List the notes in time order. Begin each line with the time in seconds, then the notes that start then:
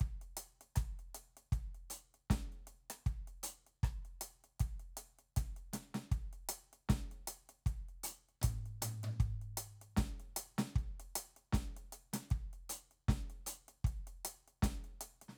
0.01 kick, closed hi-hat
0.22 closed hi-hat
0.38 closed hi-hat
0.62 closed hi-hat
0.76 kick, cross-stick, closed hi-hat
1.00 closed hi-hat
1.15 closed hi-hat
1.38 closed hi-hat
1.53 kick, closed hi-hat
1.75 closed hi-hat
1.91 closed hi-hat
2.15 closed hi-hat
2.31 kick, snare, closed hi-hat
2.53 closed hi-hat
2.68 closed hi-hat
2.91 cross-stick, closed hi-hat
3.07 kick, closed hi-hat
3.28 closed hi-hat
3.44 closed hi-hat
3.67 closed hi-hat
3.84 kick, cross-stick, closed hi-hat
4.06 closed hi-hat
4.22 closed hi-hat
4.45 closed hi-hat
4.60 kick, closed hi-hat
4.80 closed hi-hat
4.98 closed hi-hat
5.20 closed hi-hat
5.37 kick, snare, closed hi-hat
5.57 closed hi-hat
5.74 snare, closed hi-hat
5.95 snare, closed hi-hat
6.12 kick, closed hi-hat
6.34 closed hi-hat
6.50 closed hi-hat
6.74 closed hi-hat
6.90 kick, snare, closed hi-hat
7.12 closed hi-hat
7.28 closed hi-hat
7.50 closed hi-hat
7.67 kick, closed hi-hat
7.89 closed hi-hat
8.04 closed hi-hat
8.29 closed hi-hat
8.42 kick, closed hi-hat, high tom
8.67 closed hi-hat
8.83 closed hi-hat, high tom
9.04 closed hi-hat, high tom
9.21 kick, closed hi-hat
9.42 closed hi-hat
9.58 closed hi-hat
9.82 closed hi-hat
9.97 kick, snare, closed hi-hat
10.21 closed hi-hat
10.37 closed hi-hat
10.59 snare, closed hi-hat
10.76 kick, closed hi-hat
11.00 closed hi-hat
11.16 closed hi-hat
11.37 closed hi-hat
11.53 kick, snare, closed hi-hat
11.77 closed hi-hat
11.93 closed hi-hat
12.14 snare, closed hi-hat
12.31 kick, closed hi-hat
12.54 closed hi-hat
12.70 closed hi-hat
12.92 closed hi-hat
13.09 kick, snare, closed hi-hat
13.31 closed hi-hat
13.47 closed hi-hat
13.69 closed hi-hat
13.85 kick, closed hi-hat
14.08 closed hi-hat
14.26 closed hi-hat
14.49 closed hi-hat
14.63 kick, snare, closed hi-hat
14.85 closed hi-hat
15.02 closed hi-hat
15.22 snare, closed hi-hat
15.29 snare
15.32 snare